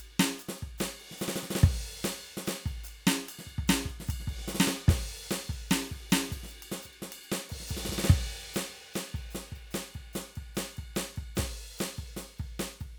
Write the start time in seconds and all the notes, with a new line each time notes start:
0.01 ride bell
0.20 snare
0.39 hi-hat pedal, ride bell
0.49 snare
0.58 kick, ride bell
0.78 snare, hi-hat pedal, ride bell
1.00 ride
1.11 snare
1.18 snare, hi-hat pedal
1.28 snare
1.36 snare
1.43 snare
1.50 snare
1.55 snare
1.63 kick, crash
2.03 snare, hi-hat pedal, ride bell
2.24 ride
2.37 snare
2.46 snare, hi-hat pedal, ride bell
2.66 kick, ride
2.84 hi-hat pedal
2.88 ride bell
3.07 snare
3.29 hi-hat pedal, ride bell
3.39 snare
3.47 kick, ride bell
3.58 kick
3.68 snare, hi-hat pedal, ride bell
3.85 kick
3.90 ride bell
4.00 snare
4.07 kick, hi-hat pedal, ride bell
4.20 snare
4.27 kick, ride
4.38 snare
4.48 snare, hi-hat pedal
4.55 snare
4.60 snare
4.67 snare
4.88 kick, snare, crash
5.08 ride
5.30 snare, hi-hat pedal, ride bell
5.49 kick, ride
5.70 snare, hi-hat pedal, ride
5.91 kick, ride bell
6.10 snare, hi-hat pedal, ride
6.29 kick, snare, ride
6.43 snare
6.48 hi-hat pedal
6.53 ride bell
6.62 ride bell
6.72 snare
6.82 kick, hi-hat pedal, ride
6.93 ride bell
7.02 snare
7.12 hi-hat pedal, ride bell
7.23 ride
7.32 snare
7.49 kick, crash
7.60 snare
7.67 kick, hi-hat pedal, ride
7.77 snare
7.85 kick, snare
7.92 snare
7.98 snare
8.04 snare
8.10 kick, crash
8.54 snare, hi-hat pedal, ride bell
8.94 snare, hi-hat pedal, ride bell
9.14 kick, ride
9.31 hi-hat pedal
9.35 snare, ride bell
9.52 kick, ride
9.71 snare, hi-hat pedal
9.76 ride bell
9.94 kick, ride bell
10.13 snare, hi-hat pedal, ride bell
10.36 kick, ride bell
10.55 snare, hi-hat pedal, ride bell
10.77 kick, ride bell
10.95 snare, hi-hat pedal, ride bell
11.16 kick, ride bell
11.35 kick, snare, hi-hat pedal, crash
11.77 snare, hi-hat pedal, ride bell
11.98 kick, ride bell
12.16 snare, hi-hat pedal, ride bell
12.39 kick, ride bell
12.59 snare, hi-hat pedal, ride bell
12.80 kick, ride